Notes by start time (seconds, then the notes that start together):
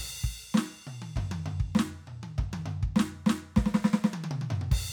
0.24 kick
0.55 snare
0.58 snare
0.88 mid tom
1.03 high tom
1.17 kick, floor tom
1.32 high tom
1.47 floor tom
1.61 kick
1.76 snare
1.80 snare
2.08 mid tom
2.24 high tom
2.39 kick, floor tom
2.54 high tom
2.67 floor tom
2.83 kick
2.97 snare
3.00 snare
3.27 snare
3.30 snare
3.57 kick, snare
3.67 snare
3.75 snare
3.83 snare, hi-hat pedal
3.94 snare
4.05 snare
4.14 high tom
4.25 high tom
4.32 mid tom
4.42 high tom
4.51 floor tom
4.62 mid tom
4.72 kick, crash